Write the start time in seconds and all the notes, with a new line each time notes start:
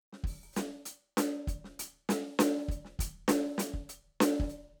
0.12 snare
0.24 open hi-hat, kick
0.43 open hi-hat
0.53 closed hi-hat, snare, hi-hat pedal
0.85 closed hi-hat
1.17 closed hi-hat, snare
1.47 closed hi-hat, kick
1.64 snare
1.79 closed hi-hat
2.09 closed hi-hat, snare
2.39 closed hi-hat, snare
2.58 snare
2.68 closed hi-hat, kick
2.85 snare
2.90 snare
2.99 closed hi-hat, kick
3.28 closed hi-hat, snare
3.58 closed hi-hat, snare
3.73 kick
3.87 closed hi-hat, snare
4.20 closed hi-hat, snare
4.40 kick, snare
4.49 closed hi-hat